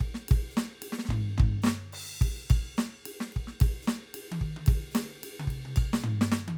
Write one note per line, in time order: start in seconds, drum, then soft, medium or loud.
0.01 kick medium
0.01 ride soft
0.15 snare medium
0.29 kick loud
0.29 ride loud
0.51 hi-hat pedal soft
0.57 snare loud
0.82 ride loud
0.93 snare medium
0.99 snare medium
1.05 kick medium
1.05 snare medium
1.11 floor tom loud
1.38 kick loud
1.38 floor tom loud
1.62 snare loud
1.62 hi-hat pedal medium
1.67 snare loud
1.93 crash loud
2.21 kick loud
2.21 ride loud
2.50 kick loud
2.50 ride bell loud
2.77 snare loud
2.77 hi-hat pedal medium
3.06 ride loud
3.21 snare medium
3.32 kick medium
3.32 ride medium
3.47 snare medium
3.61 kick loud
3.61 ride loud
3.83 hi-hat pedal medium
3.88 snare loud
4.14 ride loud
4.32 high tom loud
4.41 kick medium
4.57 high tom medium
4.67 kick loud
4.67 ride loud
4.92 snare loud
4.92 hi-hat pedal medium
4.92 ride loud
5.24 ride loud
5.40 mid tom loud
5.48 kick medium
5.48 ride medium
5.65 mid tom medium
5.76 kick loud
5.76 ride bell loud
5.94 snare loud
6.00 hi-hat pedal medium
6.04 floor tom loud
6.21 snare loud
6.32 snare loud
6.48 high tom loud